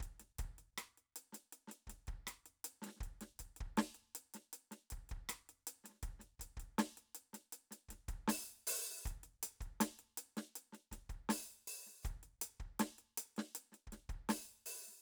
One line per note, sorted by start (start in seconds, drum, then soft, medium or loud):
0.00 kick soft
0.00 closed hi-hat soft
0.20 snare soft
0.20 closed hi-hat soft
0.39 kick soft
0.39 closed hi-hat medium
0.59 closed hi-hat soft
0.78 cross-stick medium
0.78 closed hi-hat medium
0.98 closed hi-hat soft
1.16 closed hi-hat medium
1.33 snare soft
1.33 closed hi-hat medium
1.53 closed hi-hat soft
1.68 snare soft
1.68 closed hi-hat soft
1.87 kick soft
1.87 snare soft
1.87 closed hi-hat soft
2.08 kick soft
2.08 closed hi-hat soft
2.27 cross-stick medium
2.27 closed hi-hat medium
2.46 closed hi-hat soft
2.65 closed hi-hat medium
2.82 snare soft
2.82 closed hi-hat soft
2.86 snare soft
2.88 snare soft
2.97 snare soft
3.01 kick soft
3.01 closed hi-hat soft
3.21 snare soft
3.21 closed hi-hat soft
3.40 kick soft
3.40 closed hi-hat medium
3.57 closed hi-hat soft
3.61 kick soft
3.78 snare medium
3.78 closed hi-hat soft
3.95 closed hi-hat soft
4.15 closed hi-hat medium
4.34 snare soft
4.34 closed hi-hat medium
4.53 closed hi-hat medium
4.72 snare soft
4.72 closed hi-hat soft
4.91 kick soft
4.91 closed hi-hat medium
5.10 kick soft
5.10 closed hi-hat soft
5.29 cross-stick medium
5.29 closed hi-hat medium
5.49 closed hi-hat soft
5.67 closed hi-hat medium
5.84 snare soft
5.84 closed hi-hat soft
5.88 snare soft
5.90 snare soft
5.95 snare soft
6.03 kick soft
6.03 closed hi-hat soft
6.20 snare soft
6.20 closed hi-hat soft
6.40 kick soft
6.40 closed hi-hat medium
6.57 kick soft
6.57 closed hi-hat soft
6.79 snare medium
6.79 closed hi-hat medium
6.98 closed hi-hat soft
7.15 closed hi-hat medium
7.34 snare soft
7.34 closed hi-hat medium
7.53 closed hi-hat medium
7.71 snare soft
7.71 closed hi-hat medium
7.89 kick soft
7.89 snare soft
7.89 closed hi-hat soft
8.09 kick soft
8.09 closed hi-hat soft
8.28 open hi-hat medium
8.28 snare medium
8.67 open hi-hat loud
9.06 kick soft
9.06 closed hi-hat soft
9.06 hi-hat pedal soft
9.24 closed hi-hat soft
9.43 closed hi-hat loud
9.61 kick soft
9.61 closed hi-hat soft
9.81 snare medium
9.81 closed hi-hat medium
9.99 closed hi-hat soft
10.18 closed hi-hat medium
10.37 snare soft
10.37 closed hi-hat soft
10.56 closed hi-hat medium
10.73 snare soft
10.73 closed hi-hat soft
10.92 kick soft
10.92 snare soft
10.92 closed hi-hat soft
11.10 kick soft
11.10 closed hi-hat soft
11.29 open hi-hat medium
11.29 snare medium
11.68 open hi-hat medium
11.87 snare soft
12.03 kick soft
12.03 closed hi-hat soft
12.03 hi-hat pedal soft
12.23 closed hi-hat soft
12.42 closed hi-hat medium
12.60 kick soft
12.60 closed hi-hat soft
12.80 snare medium
12.80 closed hi-hat medium
12.99 closed hi-hat soft
13.18 closed hi-hat medium
13.37 snare soft
13.37 closed hi-hat soft
13.55 closed hi-hat medium
13.72 snare soft
13.72 closed hi-hat soft
13.87 kick soft
13.93 snare soft
13.93 closed hi-hat soft
14.10 kick soft
14.10 closed hi-hat soft
14.29 open hi-hat medium
14.29 snare medium
14.66 open hi-hat medium
14.88 snare soft